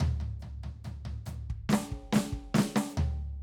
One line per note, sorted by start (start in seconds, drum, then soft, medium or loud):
0.00 floor tom loud
0.00 hi-hat pedal soft
0.00 high tom loud
0.20 floor tom medium
0.20 high tom soft
0.39 floor tom medium
0.39 hi-hat pedal soft
0.39 high tom soft
0.63 floor tom medium
0.63 high tom medium
0.84 floor tom medium
0.84 hi-hat pedal soft
0.84 high tom medium
1.05 floor tom medium
1.05 high tom medium
1.26 floor tom medium
1.26 hi-hat pedal medium
1.26 high tom medium
1.50 kick soft
1.69 snare loud
1.73 snare loud
1.92 kick soft
2.12 snare loud
2.16 snare loud
2.32 kick medium
2.54 snare loud
2.58 snare loud
2.76 snare loud
2.89 hi-hat pedal medium
2.97 floor tom loud